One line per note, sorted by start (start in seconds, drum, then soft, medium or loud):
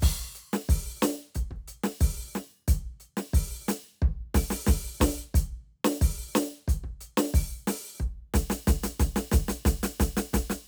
0.01 kick loud
0.01 hi-hat pedal medium
0.01 crash loud
0.35 closed hi-hat medium
0.54 snare loud
0.69 open hi-hat loud
0.69 kick loud
1.01 closed hi-hat loud
1.01 snare loud
1.01 hi-hat pedal medium
1.35 closed hi-hat medium
1.35 kick medium
1.51 kick medium
1.57 crash soft
1.68 closed hi-hat medium
1.84 snare loud
2.01 open hi-hat loud
2.01 kick loud
2.24 snare soft
2.34 snare loud
2.34 hi-hat pedal soft
2.68 closed hi-hat loud
2.68 kick loud
3.00 closed hi-hat soft
3.17 snare loud
3.34 open hi-hat loud
3.34 kick loud
3.66 closed hi-hat loud
3.66 snare loud
3.66 hi-hat pedal soft
4.02 kick loud
4.35 open hi-hat loud
4.35 kick loud
4.35 snare loud
4.51 open hi-hat loud
4.51 snare loud
4.67 open hi-hat loud
4.67 kick loud
4.67 snare loud
5.01 open hi-hat loud
5.01 kick loud
5.01 snare loud
5.35 closed hi-hat loud
5.35 kick loud
5.85 snare loud
6.02 open hi-hat loud
6.02 kick loud
6.34 closed hi-hat loud
6.34 snare loud
6.34 hi-hat pedal soft
6.68 closed hi-hat medium
6.68 kick loud
6.84 kick medium
7.01 closed hi-hat medium
7.18 snare loud
7.34 open hi-hat loud
7.34 kick loud
7.68 open hi-hat loud
7.68 snare loud
7.98 kick medium
7.98 hi-hat pedal soft
8.34 closed hi-hat loud
8.34 kick loud
8.34 snare loud
8.50 closed hi-hat loud
8.50 snare loud
8.68 closed hi-hat loud
8.68 kick loud
8.68 snare loud
8.84 closed hi-hat loud
8.84 snare loud
9.00 closed hi-hat loud
9.00 kick loud
9.00 snare loud
9.16 closed hi-hat loud
9.16 snare loud
9.32 closed hi-hat loud
9.32 kick loud
9.32 snare loud
9.49 closed hi-hat loud
9.49 snare loud
9.66 closed hi-hat loud
9.66 kick loud
9.66 snare loud
9.83 closed hi-hat loud
9.83 snare loud
10.00 closed hi-hat loud
10.00 kick loud
10.00 snare loud
10.17 closed hi-hat loud
10.17 snare loud
10.34 closed hi-hat loud
10.34 kick medium
10.34 snare loud
10.50 closed hi-hat loud
10.50 snare loud